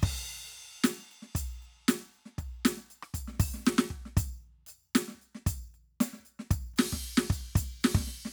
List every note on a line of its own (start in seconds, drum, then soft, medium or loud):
0.01 kick loud
0.01 crash loud
0.01 percussion soft
0.84 snare loud
0.84 percussion loud
0.99 snare soft
1.02 snare soft
1.12 percussion soft
1.23 snare soft
1.36 kick loud
1.36 percussion loud
1.63 percussion soft
1.89 snare loud
1.89 percussion loud
2.00 snare soft
2.02 snare soft
2.15 percussion soft
2.26 snare soft
2.39 kick medium
2.39 percussion medium
2.66 snare loud
2.66 percussion loud
2.78 snare soft
2.91 percussion medium
3.03 cross-stick medium
3.15 kick medium
3.15 percussion loud
3.28 snare soft
3.34 snare soft
3.38 kick loud
3.38 snare soft
3.38 percussion loud
3.54 snare soft
3.58 snare soft
3.60 snare soft
3.62 snare soft
3.67 snare loud
3.67 percussion medium
3.79 snare loud
3.91 kick medium
4.06 snare soft
4.17 kick loud
4.17 percussion loud
4.67 percussion medium
4.69 percussion medium
4.96 snare loud
4.96 percussion loud
5.09 snare soft
5.11 snare soft
5.15 kick soft
5.22 percussion soft
5.35 snare soft
5.47 kick loud
5.47 percussion loud
5.75 percussion soft
6.01 snare loud
6.01 percussion loud
6.14 snare soft
6.17 kick soft
6.17 snare soft
6.22 snare soft
6.22 percussion soft
6.40 snare medium
6.51 kick loud
6.51 percussion loud
6.74 kick soft
6.74 percussion soft
6.78 snare loud
6.78 crash loud
6.93 kick medium
6.93 snare medium
7.03 snare soft
7.18 snare loud
7.31 kick loud
7.31 percussion medium
7.56 kick loud
7.56 percussion loud
7.63 snare soft
7.81 snare loud
7.81 percussion soft
7.81 crash loud
7.95 kick loud
7.95 snare medium
8.01 snare medium
8.08 snare soft
8.26 snare medium